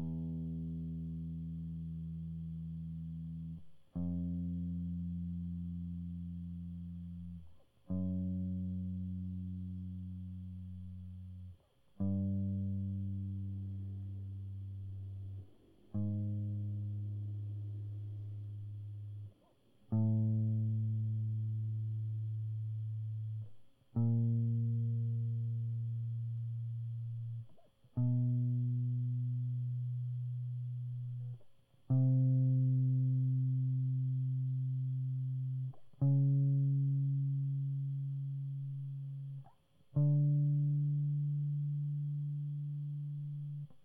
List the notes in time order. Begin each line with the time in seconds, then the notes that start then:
0.00 E2
3.98 F2
7.93 F#2
12.03 G2
15.97 G#2
19.94 A2
23.98 A#2
28.00 B2
31.93 C3
36.03 C#3
39.98 D3